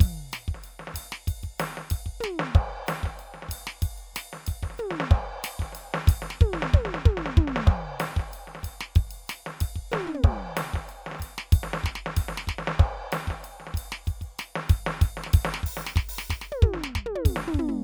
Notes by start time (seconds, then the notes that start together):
0.01 kick, ride
0.32 snare, hi-hat pedal, ride
0.48 kick
0.55 snare
0.63 hi-hat pedal, ride
0.80 snare
0.88 snare
0.94 kick, hi-hat pedal, ride
1.12 snare
1.28 kick, ride
1.43 kick, ride
1.58 snare, hi-hat pedal, ride
1.77 snare
1.90 kick, ride
2.06 kick
2.12 ride
2.20 snare, hi-hat pedal, mid tom
2.39 snare
2.55 kick, crash
2.86 snare, hi-hat pedal, ride
3.03 kick, snare
3.19 ride
3.34 snare
3.43 snare
3.49 kick, hi-hat pedal, ride
3.67 snare
3.82 kick, ride
3.98 ride
4.13 kick, snare, hi-hat pedal, ride
4.33 snare
4.47 kick, ride
4.63 kick, snare
4.70 snare
4.78 hi-hat pedal, mid tom
4.91 snare
5.00 snare
5.11 kick, crash
5.43 snare, hi-hat pedal, ride
5.60 kick, snare
5.73 snare, hi-hat pedal, ride
5.94 snare
6.08 kick, ride
6.22 snare
6.31 snare
6.41 kick, mid tom
6.54 snare
6.63 snare
6.74 kick, high tom
6.85 snare
6.94 snare
7.05 kick, mid tom
7.17 snare
7.26 snare
7.37 kick, floor tom
7.48 snare
7.56 snare
7.64 kick, crash
7.67 kick
8.00 snare, hi-hat pedal, ride
8.17 kick, snare
8.32 hi-hat pedal, ride
8.48 snare
8.55 snare
8.63 kick, hi-hat pedal, ride
8.81 snare
8.96 kick, ride
9.11 ride
9.27 snare, hi-hat pedal, ride
9.47 snare
9.61 kick, ride
9.76 kick
9.91 snare, hi-hat pedal, mid tom
10.07 floor tom
10.14 high tom
10.24 kick, crash
10.57 snare, hi-hat pedal, ride
10.74 kick, snare
10.87 hi-hat pedal, ride
11.07 snare
11.12 snare
11.15 snare, hi-hat pedal
11.20 kick, ride
11.38 snare
11.53 kick, ride
11.64 snare
11.84 kick, snare
11.96 snare
12.06 snare
12.17 kick, ride
12.29 snare
12.38 snare
12.48 kick, snare
12.59 snare
12.68 snare
12.79 kick, crash
13.12 snare, hi-hat pedal, ride
13.28 kick, snare
13.43 snare, hi-hat pedal, ride
13.60 snare
13.67 snare
13.74 kick, hi-hat pedal, ride
13.92 snare
14.05 kick, hi-hat pedal, ride
14.21 kick, ride
14.39 snare, hi-hat pedal, ride
14.56 snare
14.69 kick, hi-hat pedal, ride
14.87 snare
15.02 kick, ride
15.17 snare
15.24 snare
15.27 snare
15.34 kick, ride
15.45 snare
15.54 snare
15.63 open hi-hat, kick
15.77 snare
15.87 snare
15.96 kick, snare
16.09 open hi-hat
16.19 snare
16.30 kick, snare
16.42 snare
16.52 high tom
16.63 kick, mid tom
16.74 snare
16.84 snare
16.95 kick, snare
17.06 mid tom
17.15 high tom
17.25 kick, mid tom, ride
17.36 snare
17.47 floor tom
17.55 kick
17.59 floor tom
17.68 floor tom